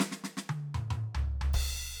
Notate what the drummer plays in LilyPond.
\new DrumStaff \drummode { \time 4/4 \tempo 4 = 120 sn16 sn16 sn16 sn16 tommh8 toml16 toml16 r16 tomfh8 tomfh16 <cymc bd>4 | }